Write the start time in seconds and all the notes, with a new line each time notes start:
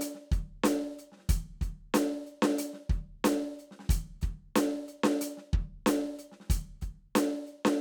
0.01 closed hi-hat
0.15 snare
0.32 closed hi-hat, kick
0.64 closed hi-hat, snare
0.99 closed hi-hat
1.12 snare
1.17 snare
1.19 snare
1.24 snare
1.29 closed hi-hat, kick
1.61 closed hi-hat, kick
1.94 closed hi-hat, snare
2.27 closed hi-hat
2.42 snare
2.49 snare
2.59 closed hi-hat
2.74 snare
2.90 closed hi-hat, kick
3.24 closed hi-hat, snare
3.32 snare
3.59 closed hi-hat
3.71 snare
3.79 snare
3.83 snare
3.89 closed hi-hat, kick
4.22 closed hi-hat, kick
4.56 closed hi-hat, snare
4.88 closed hi-hat
5.04 snare
5.21 closed hi-hat
5.38 snare
5.53 kick, closed hi-hat
5.86 closed hi-hat, snare
6.19 closed hi-hat
6.32 snare
6.40 snare
6.43 snare
6.47 closed hi-hat, kick, snare
6.82 closed hi-hat, kick
7.15 closed hi-hat, snare
7.47 closed hi-hat
7.65 snare